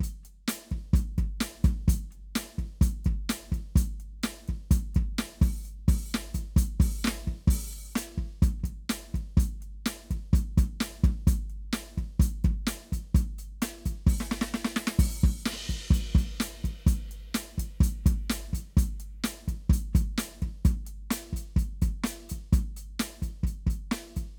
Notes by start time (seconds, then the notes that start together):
0.01 closed hi-hat, kick
0.24 snare, closed hi-hat
0.48 closed hi-hat, snare
0.71 kick, closed hi-hat
0.94 closed hi-hat, kick
1.19 kick, closed hi-hat
1.41 closed hi-hat, snare
1.64 closed hi-hat, kick
1.88 closed hi-hat, kick
2.11 snare, closed hi-hat
2.36 closed hi-hat, snare
2.44 snare
2.59 kick, closed hi-hat
2.82 closed hi-hat, kick
3.05 kick, closed hi-hat
3.30 closed hi-hat, snare
3.53 kick, closed hi-hat
3.76 closed hi-hat, kick
4.00 closed hi-hat
4.24 closed hi-hat, snare
4.48 kick, closed hi-hat
4.71 closed hi-hat, kick
4.94 kick, snare, closed hi-hat
5.19 snare, closed hi-hat
5.42 open hi-hat, kick
5.65 hi-hat pedal, open hi-hat
5.89 open hi-hat, kick
6.11 snare, hi-hat pedal
6.15 closed hi-hat
6.35 closed hi-hat, kick
6.57 closed hi-hat, kick
6.80 open hi-hat, kick, snare
7.05 snare, hi-hat pedal
7.08 snare
7.28 kick
7.48 open hi-hat, kick
7.73 snare, open hi-hat
7.94 snare, hi-hat pedal
7.98 closed hi-hat
8.18 kick, closed hi-hat
8.43 closed hi-hat, kick
8.60 snare
8.64 kick, closed hi-hat
8.90 closed hi-hat, snare
9.03 snare
9.06 snare
9.15 kick, closed hi-hat
9.38 closed hi-hat, kick
9.61 snare, closed hi-hat
9.86 closed hi-hat, snare
10.11 kick, closed hi-hat
10.34 closed hi-hat, kick
10.58 closed hi-hat, kick, snare
10.81 closed hi-hat, snare
11.04 kick, closed hi-hat
11.28 closed hi-hat, kick
11.50 closed hi-hat
11.73 closed hi-hat, snare
11.98 kick, closed hi-hat
12.20 closed hi-hat, kick
12.45 kick, snare, closed hi-hat
12.67 closed hi-hat, snare
12.83 snare
12.93 closed hi-hat, kick
13.15 closed hi-hat, kick
13.39 closed hi-hat, snare
13.62 closed hi-hat, snare
13.86 closed hi-hat, kick
14.07 open hi-hat, kick
14.21 snare
14.27 hi-hat pedal
14.32 snare
14.54 snare
14.65 snare
14.71 kick
14.77 snare
14.88 snare
15.00 open hi-hat, kick
15.24 kick
15.44 snare, hi-hat pedal, crash
15.54 snare
15.70 closed hi-hat, kick
15.91 closed hi-hat, kick
16.16 closed hi-hat, kick, snare
16.41 closed hi-hat, snare
16.57 snare
16.65 kick, closed hi-hat
16.87 closed hi-hat, kick
17.09 snare, closed hi-hat
17.35 closed hi-hat, snare
17.58 kick, closed hi-hat
17.81 closed hi-hat, kick
18.04 kick, snare, closed hi-hat
18.30 closed hi-hat, snare
18.54 closed hi-hat, kick
18.77 closed hi-hat, kick
19.00 snare, closed hi-hat
19.24 closed hi-hat, snare
19.41 snare
19.48 kick, closed hi-hat
19.70 closed hi-hat, kick
19.93 closed hi-hat, kick, snare
20.18 closed hi-hat, snare
20.42 kick, closed hi-hat
20.66 closed hi-hat, kick
20.86 snare, closed hi-hat
21.11 closed hi-hat, snare
21.33 closed hi-hat, kick
21.57 closed hi-hat, kick
21.82 closed hi-hat, kick
22.04 closed hi-hat, snare
22.30 closed hi-hat, kick
22.53 closed hi-hat, kick
22.77 closed hi-hat
23.00 closed hi-hat, snare
23.23 closed hi-hat, kick
23.44 closed hi-hat, kick
23.67 closed hi-hat, kick
23.92 closed hi-hat, snare
24.17 closed hi-hat, kick